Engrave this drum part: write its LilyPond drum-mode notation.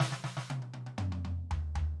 \new DrumStaff \drummode { \time 4/4 \tempo 4 = 120 sn16 sn16 sn16 sn16 tommh16 tommh16 tommh16 tommh16 toml16 toml16 toml8 tomfh8 tomfh8 | }